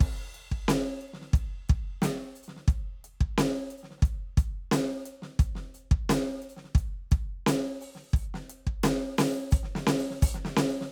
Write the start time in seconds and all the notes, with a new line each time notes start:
0.01 kick, crash
0.35 closed hi-hat
0.52 kick, snare
0.69 closed hi-hat, snare
1.02 closed hi-hat
1.09 closed hi-hat
1.14 snare
1.22 snare
1.32 kick, snare
1.36 closed hi-hat
1.69 kick, closed hi-hat
2.02 closed hi-hat, snare
2.36 closed hi-hat
2.43 closed hi-hat
2.48 snare
2.57 snare
2.68 kick, closed hi-hat
3.05 closed hi-hat
3.21 kick
3.38 snare, closed hi-hat
3.71 closed hi-hat
3.78 closed hi-hat
3.84 snare, closed hi-hat
3.91 snare
3.99 snare
4.03 kick, closed hi-hat
4.38 closed hi-hat, kick
4.72 closed hi-hat, snare
4.83 snare
5.06 closed hi-hat
5.23 snare
5.40 closed hi-hat, kick
5.56 snare
5.75 closed hi-hat
5.92 kick
6.10 closed hi-hat, snare
6.42 closed hi-hat
6.50 closed hi-hat
6.57 snare
6.65 snare
6.75 kick, snare, closed hi-hat
7.12 kick, snare, closed hi-hat
7.47 closed hi-hat, snare
7.81 open hi-hat
7.96 snare
8.14 kick, open hi-hat
8.25 hi-hat pedal
8.35 snare
8.50 closed hi-hat
8.67 kick
8.84 snare, closed hi-hat
9.18 open hi-hat, snare
9.52 open hi-hat, kick, hi-hat pedal
9.64 snare
9.76 snare
9.87 snare
9.99 open hi-hat
10.11 snare
10.23 open hi-hat, kick
10.30 hi-hat pedal
10.35 snare
10.45 snare
10.57 snare
10.69 open hi-hat
10.81 snare